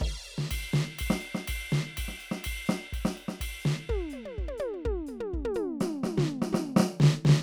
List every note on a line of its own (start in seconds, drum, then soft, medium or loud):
0.01 kick soft
0.01 crash loud
0.08 kick soft
0.13 kick soft
0.24 hi-hat pedal medium
0.39 snare medium
0.51 kick soft
0.51 ride loud
0.58 kick soft
0.72 snare loud
0.72 hi-hat pedal medium
0.99 kick soft
0.99 ride loud
1.07 kick soft
1.07 snare loud
1.21 hi-hat pedal medium
1.21 ride soft
1.35 snare medium
1.42 hi-hat pedal soft
1.48 kick soft
1.48 ride bell loud
1.70 snare loud
1.70 hi-hat pedal medium
1.97 kick soft
1.97 ride bell loud
2.05 kick soft
2.09 snare soft
2.20 hi-hat pedal medium
2.20 ride soft
2.32 snare medium
2.45 kick soft
2.45 ride bell loud
2.66 snare loud
2.66 hi-hat pedal medium
2.93 kick soft
2.93 ride bell medium
2.99 kick soft
3.06 snare medium
3.12 hi-hat pedal medium
3.18 ride soft
3.29 snare medium
3.41 kick soft
3.41 ride bell loud
3.61 hi-hat pedal medium
3.66 snare loud
3.89 kick soft
3.89 mid tom loud
3.97 kick soft
4.10 hi-hat pedal medium
4.10 high tom medium
4.26 high tom medium
4.38 kick soft
4.38 high tom soft
4.45 kick soft
4.45 high tom medium
4.58 hi-hat pedal medium
4.58 high tom loud
4.74 high tom soft
4.85 kick soft
4.85 mid tom loud
4.93 kick soft
5.07 hi-hat pedal medium
5.07 mid tom medium
5.20 mid tom loud
5.34 kick soft
5.34 mid tom soft
5.40 kick soft
5.45 mid tom loud
5.55 hi-hat pedal medium
5.55 mid tom loud
5.81 snare medium
5.81 hi-hat pedal loud
5.81 floor tom loud
6.04 snare medium
6.04 floor tom medium
6.17 snare loud
6.17 floor tom loud
6.42 snare medium
6.42 floor tom medium
6.53 snare medium
6.53 floor tom loud
6.77 snare loud
6.80 snare loud
7.01 snare loud
7.04 snare loud
7.26 snare loud
7.30 snare loud